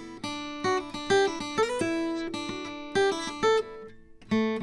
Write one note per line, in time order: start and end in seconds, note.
0.00 0.23 E4
0.25 0.94 D4
0.66 0.78 F#4
0.79 1.00 E4
0.96 1.40 D4
1.12 1.27 G4
1.27 1.44 E4
1.42 1.63 D4
1.60 1.82 A#4
1.82 2.33 E4
2.35 3.27 D4
2.51 2.65 F#4
2.67 2.73 E4
2.97 3.12 G4
3.12 3.34 E4
3.29 3.44 D4
3.45 3.58 C#4
3.45 3.58 A4
3.59 3.80 E4
4.29 4.60 A3
4.29 4.51 B3